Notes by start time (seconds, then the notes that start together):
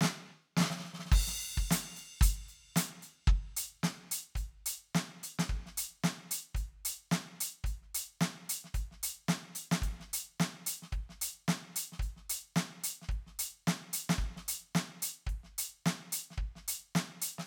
0.02 snare
0.04 snare
0.42 snare
0.57 snare
0.60 snare
0.63 snare
0.65 snare
0.76 snare
0.80 snare
0.84 snare
0.88 snare
0.94 snare
0.99 snare
1.05 snare
1.12 kick, snare, crash
1.27 snare
1.40 closed hi-hat
1.57 kick
1.71 closed hi-hat, snare
1.96 closed hi-hat
2.21 closed hi-hat, kick
2.48 closed hi-hat
2.76 closed hi-hat, snare
3.02 closed hi-hat
3.27 kick
3.57 closed hi-hat
3.83 snare
4.11 closed hi-hat
4.35 closed hi-hat, kick
4.66 closed hi-hat
4.95 snare
5.23 closed hi-hat
5.39 snare
5.49 kick
5.66 snare
5.77 closed hi-hat
6.04 snare
6.31 closed hi-hat
6.55 closed hi-hat, kick
6.76 snare
6.85 closed hi-hat
7.11 snare
7.41 closed hi-hat
7.64 closed hi-hat, kick
7.82 snare
7.95 closed hi-hat
8.21 snare
8.49 closed hi-hat
8.64 snare
8.74 closed hi-hat, kick
8.91 snare
9.03 closed hi-hat
9.29 snare
9.55 closed hi-hat
9.71 snare
9.82 kick, closed hi-hat
10.00 snare
10.07 snare
10.13 closed hi-hat
10.40 snare
10.66 closed hi-hat
10.82 snare
10.92 kick, closed hi-hat
11.09 snare
11.21 closed hi-hat
11.48 snare
11.76 closed hi-hat
11.92 snare
11.99 closed hi-hat, kick
12.16 snare
12.30 closed hi-hat
12.56 snare
12.84 closed hi-hat
13.02 snare
13.09 kick, closed hi-hat
13.26 snare
13.39 closed hi-hat
13.67 snare
13.93 closed hi-hat
14.09 snare
14.18 kick, closed hi-hat
14.36 snare
14.48 closed hi-hat
14.75 snare
15.02 closed hi-hat
15.27 kick, closed hi-hat
15.44 snare
15.58 closed hi-hat
15.86 snare
16.12 closed hi-hat
16.30 snare
16.38 kick
16.56 snare
16.68 closed hi-hat
16.95 snare
17.22 closed hi-hat
17.39 snare